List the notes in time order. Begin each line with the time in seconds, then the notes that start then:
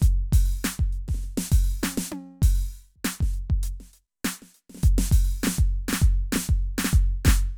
0.01 closed hi-hat, kick, snare
0.32 open hi-hat, kick
0.64 open hi-hat, snare, hi-hat pedal
0.79 kick
0.93 closed hi-hat
1.08 kick, snare
1.14 snare
1.18 snare
1.23 closed hi-hat, snare
1.37 snare
1.52 open hi-hat, kick
1.83 snare, hi-hat pedal, high tom
1.97 snare
2.12 high tom
2.42 open hi-hat, kick
2.96 kick
3.04 open hi-hat, snare, hi-hat pedal
3.21 kick, snare
3.33 closed hi-hat
3.50 kick, crash
3.63 closed hi-hat
3.80 snare
3.93 closed hi-hat
4.25 closed hi-hat, snare
4.42 snare
4.54 closed hi-hat
4.70 snare
4.75 snare
4.77 snare
4.83 closed hi-hat, kick
4.98 snare
5.12 open hi-hat, kick
5.43 snare, hi-hat pedal
5.47 snare
5.58 kick
5.88 snare
5.93 snare
6.02 kick
6.32 snare
6.36 snare
6.49 kick
6.78 snare
6.84 snare
6.93 kick
7.25 kick, snare
7.28 snare